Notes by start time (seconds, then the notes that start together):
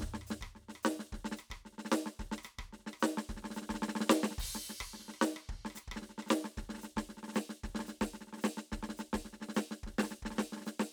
0.01 kick, snare
0.09 kick
0.14 snare
0.21 cross-stick
0.27 snare, hi-hat pedal
0.41 kick, cross-stick
0.55 snare
0.62 snare
0.67 snare
0.75 cross-stick
0.83 snare, hi-hat pedal
0.99 snare
1.12 kick, snare
1.25 snare
1.32 snare
1.37 cross-stick, hi-hat pedal
1.50 kick, cross-stick
1.65 snare
1.73 snare
1.78 snare
1.85 snare
1.92 snare, hi-hat pedal
2.06 snare
2.19 kick, snare
2.32 snare
2.38 cross-stick
2.43 cross-stick, hi-hat pedal
2.59 kick, cross-stick
2.73 snare
2.79 snare
2.84 snare
2.87 snare
2.93 cross-stick
3.00 snare, hi-hat pedal
3.17 snare
3.29 kick, snare
3.37 snare
3.43 snare
3.44 snare
3.50 snare, hi-hat pedal
3.57 snare
3.62 snare
3.69 kick, snare
3.74 snare
3.82 snare
3.89 snare
3.95 snare
4.01 snare
4.06 snare
4.10 snare, hi-hat pedal
4.23 snare
4.31 snare
4.38 kick, crash
4.45 kick
4.55 snare
4.65 hi-hat pedal
4.70 snare
4.80 kick, cross-stick
4.94 snare
5.00 snare
5.04 snare
5.08 snare
5.14 cross-stick
5.17 cross-stick
5.22 snare, hi-hat pedal
5.36 cross-stick
5.49 kick, snare
5.56 kick
5.65 snare
5.70 cross-stick
5.75 cross-stick, snare, hi-hat pedal
5.88 kick, cross-stick
5.96 snare
6.02 snare
6.10 snare
6.18 snare
6.23 cross-stick, snare
6.29 snare, hi-hat pedal
6.45 snare
6.57 kick, snare
6.64 kick
6.69 snare
6.74 snare
6.77 snare, hi-hat pedal
6.84 snare
6.96 kick, snare
7.09 snare
7.17 snare
7.23 snare
7.28 snare
7.33 snare, hi-hat pedal
7.36 snare
7.49 snare
7.64 kick, snare
7.75 snare
7.79 snare
7.84 snare, hi-hat pedal
7.88 snare
8.01 kick, snare
8.14 snare
8.21 snare
8.27 snare
8.33 snare
8.41 snare, hi-hat pedal
8.57 snare
8.72 kick, snare
8.83 snare
8.89 snare
8.97 snare, hi-hat pedal
9.13 kick, snare
9.25 snare
9.33 snare
9.40 snare
9.49 snare
9.55 snare, hi-hat pedal
9.71 snare
9.83 kick, snare
9.99 snare
10.03 snare
10.08 snare, hi-hat pedal
10.22 kick, snare
10.31 snare
10.35 snare
10.39 snare
10.52 snare
10.57 snare
10.61 snare
10.66 hi-hat pedal
10.80 snare